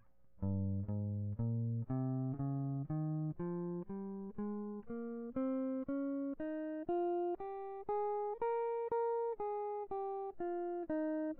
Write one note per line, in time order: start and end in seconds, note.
0.44 0.86 G2
0.90 1.37 G#2
1.41 1.86 A#2
1.91 2.39 C3
2.41 2.86 C#3
2.91 3.34 D#3
3.40 3.87 F3
3.93 4.40 G3
4.39 4.84 G#3
4.92 5.33 A#3
5.37 5.86 C4
5.89 6.36 C#4
6.40 6.86 D#4
6.89 7.38 F4
7.40 7.84 G4
7.89 8.39 G#4
8.42 8.90 A#4
8.92 9.35 A#4
9.40 9.87 G#4
9.91 10.32 G4
10.41 10.86 F4
10.90 11.34 D#4